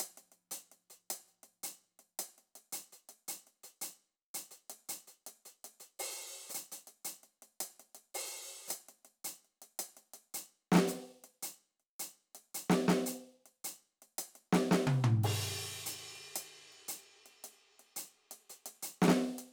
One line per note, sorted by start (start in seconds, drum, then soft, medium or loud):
0.00 closed hi-hat loud
0.17 closed hi-hat soft
0.32 closed hi-hat soft
0.51 closed hi-hat loud
0.71 closed hi-hat soft
0.90 closed hi-hat soft
1.10 closed hi-hat loud
1.27 closed hi-hat soft
1.43 closed hi-hat soft
1.63 closed hi-hat loud
1.84 closed hi-hat soft
1.99 closed hi-hat soft
2.19 closed hi-hat loud
2.38 closed hi-hat soft
2.55 closed hi-hat medium
2.72 closed hi-hat loud
2.92 closed hi-hat soft
3.09 closed hi-hat medium
3.28 closed hi-hat loud
3.47 closed hi-hat soft
3.63 closed hi-hat medium
3.81 closed hi-hat loud
4.34 closed hi-hat loud
4.51 closed hi-hat medium
4.70 closed hi-hat medium
4.89 closed hi-hat loud
5.07 closed hi-hat medium
5.26 closed hi-hat medium
5.45 closed hi-hat medium
5.64 closed hi-hat medium
5.80 closed hi-hat medium
5.99 open hi-hat loud
6.49 hi-hat pedal loud
6.54 closed hi-hat loud
6.72 closed hi-hat medium
6.87 closed hi-hat medium
7.05 closed hi-hat loud
7.23 closed hi-hat soft
7.42 closed hi-hat soft
7.60 closed hi-hat loud
7.79 closed hi-hat soft
7.95 closed hi-hat medium
8.14 open hi-hat loud
8.68 closed hi-hat loud
8.68 hi-hat pedal loud
8.88 closed hi-hat soft
9.05 closed hi-hat soft
9.24 closed hi-hat loud
9.44 closed hi-hat soft
9.62 closed hi-hat medium
9.79 closed hi-hat loud
9.97 closed hi-hat soft
10.13 closed hi-hat medium
10.34 open hi-hat loud
10.72 snare loud
10.75 snare loud
10.87 hi-hat pedal loud
11.24 closed hi-hat soft
11.42 closed hi-hat loud
11.80 closed hi-hat soft
11.99 closed hi-hat loud
12.35 closed hi-hat medium
12.54 closed hi-hat loud
12.70 snare loud
12.88 snare loud
13.06 closed hi-hat loud
13.46 closed hi-hat soft
13.64 closed hi-hat loud
14.02 closed hi-hat soft
14.18 closed hi-hat loud
14.35 closed hi-hat soft
14.52 snare loud
14.71 snare loud
14.87 high tom loud
15.04 mid tom loud
15.23 crash medium
15.23 crash loud
15.86 closed hi-hat loud
16.15 closed hi-hat soft
16.36 closed hi-hat loud
16.72 closed hi-hat soft
16.88 closed hi-hat loud
17.26 closed hi-hat soft
17.44 closed hi-hat medium
17.79 closed hi-hat soft
17.96 closed hi-hat loud
18.13 closed hi-hat soft
18.31 closed hi-hat medium
18.49 closed hi-hat medium
18.66 closed hi-hat medium
18.82 closed hi-hat loud
19.02 snare loud
19.08 snare loud
19.38 closed hi-hat medium